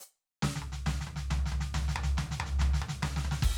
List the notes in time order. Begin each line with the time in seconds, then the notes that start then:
0.04 hi-hat pedal
0.42 snare, floor tom
0.55 snare
0.62 floor tom
0.72 snare
0.86 snare, floor tom
1.00 snare
1.07 floor tom
1.16 snare
1.30 snare, floor tom
1.46 snare
1.52 floor tom
1.60 snare
1.74 snare, floor tom
1.88 snare
1.96 floor tom
2.03 snare
2.17 snare, floor tom
2.31 snare
2.40 floor tom
2.45 snare
2.59 snare, floor tom
2.73 snare
2.77 snare
2.82 floor tom
2.88 snare
3.02 snare, floor tom
3.16 snare
3.24 floor tom
3.31 snare
3.42 kick, crash